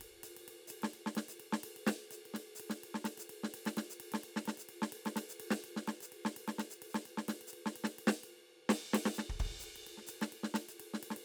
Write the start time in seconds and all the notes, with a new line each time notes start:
0.01 ride
0.23 hi-hat pedal, ride
0.37 ride
0.48 ride
0.67 hi-hat pedal, ride
0.82 snare, ride
0.94 ride
1.06 snare
1.15 snare, ride
1.29 hi-hat pedal, ride
1.40 ride
1.53 snare
1.63 ride
1.76 ride
1.87 snare, ride
2.11 hi-hat pedal, ride
2.25 ride
2.34 snare, ride
2.55 hi-hat pedal
2.60 ride
2.70 snare, ride
2.84 ride
2.94 snare
3.05 ride
3.18 hi-hat pedal, ride
3.29 ride
3.43 snare
3.54 ride
3.66 snare, ride
3.77 snare, ride
3.90 hi-hat pedal
4.00 ride
4.12 snare, ride
4.24 ride
4.36 snare
4.46 snare, ride
4.57 hi-hat pedal, ride
4.69 ride
4.82 snare
4.92 ride
5.05 snare, ride
5.16 snare, ride
5.29 hi-hat pedal
5.40 ride
5.51 snare, ride
5.64 ride
5.76 snare
5.88 snare, ride
6.01 hi-hat pedal, ride
6.12 ride
6.23 snare, hi-hat pedal
6.36 ride
6.48 snare, ride
6.58 snare, ride
6.70 hi-hat pedal
6.82 ride
6.90 hi-hat pedal
6.94 snare, ride
7.06 ride
7.17 snare
7.28 snare, ride
7.41 ride
7.47 hi-hat pedal
7.53 ride
7.66 snare
7.76 ride
7.84 snare, ride
7.99 ride
8.07 snare
8.24 ride
8.69 snare, ride
8.93 snare, ride
9.05 snare
9.14 hi-hat pedal
9.18 snare
9.29 kick
9.40 kick, ride
9.59 hi-hat pedal
9.64 ride
9.76 ride
9.87 ride
9.97 snare
10.07 hi-hat pedal, ride
10.21 snare, ride
10.32 ride
10.43 snare
10.54 snare, ride
10.68 hi-hat pedal, ride
10.80 ride
10.94 snare
11.03 ride
11.10 snare
11.16 ride